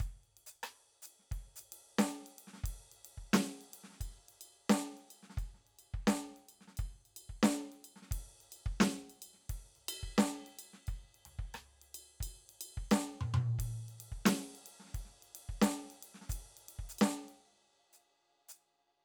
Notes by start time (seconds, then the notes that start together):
0.00 kick, hi-hat pedal, ride
0.23 ride
0.37 ride
0.46 hi-hat pedal
0.63 cross-stick, ride
1.02 hi-hat pedal, ride
1.19 snare
1.31 kick, ride
1.44 snare
1.56 hi-hat pedal, ride
1.72 ride
1.98 snare, ride
2.09 hi-hat pedal
2.26 ride
2.38 ride
2.47 snare
2.53 snare
2.57 snare
2.64 kick, ride
2.91 ride
3.05 ride
3.17 kick
3.33 snare, ride
3.61 ride
3.73 ride
3.84 snare
3.89 snare
3.92 snare
4.00 kick, ride bell
4.11 snare
4.14 snare
4.28 ride
4.41 ride bell
4.69 snare, ride
4.97 ride
5.10 ride bell
5.23 snare
5.30 snare
5.34 kick, snare
5.38 ride bell
5.54 snare
5.67 ride
5.79 ride bell
5.94 kick
6.07 snare, ride bell
6.36 ride
6.49 ride bell
6.61 snare
6.67 snare
6.73 snare
6.77 kick, ride bell
6.91 snare
6.96 snare
7.05 ride bell
7.16 ride bell
7.29 kick
7.43 snare, ride bell
7.72 snare, ride
7.84 ride bell
7.96 snare
8.02 snare
8.06 snare
8.11 kick, ride
8.40 ride
8.52 ride bell
8.66 kick
8.80 snare, ride bell
9.10 ride bell
9.22 ride bell
9.34 snare
9.38 snare
9.42 snare
9.49 kick, ride
9.62 snare
9.75 floor tom, ride
9.88 ride bell
10.03 kick
10.18 snare, ride
10.46 ride
10.59 ride bell
10.73 snare
10.87 kick, ride bell
11.03 snare
11.14 ride
11.25 snare, ride, floor tom
11.39 kick
11.54 cross-stick, floor tom, ride
11.81 ride
11.94 ride bell
12.20 kick, ride bell
12.49 ride
12.61 ride bell
12.77 kick
12.91 snare, ride bell
13.21 mid tom
13.34 mid tom
13.59 kick, ride
13.88 ride
13.94 snare
14.00 ride
14.12 kick
14.25 snare, ride
14.55 snare, ride
14.66 ride
14.80 snare
14.85 snare
14.87 snare
14.94 kick, ride
15.05 snare
15.10 snare
15.22 ride
15.35 ride
15.49 kick
15.61 snare, ride
15.90 ride
16.02 ride
16.14 snare
16.21 snare
16.25 kick, snare, hi-hat pedal
16.32 ride
16.57 ride
16.68 ride
16.79 kick
16.89 hi-hat pedal
16.98 snare, ride bell
17.28 ride
17.93 hi-hat pedal
18.49 hi-hat pedal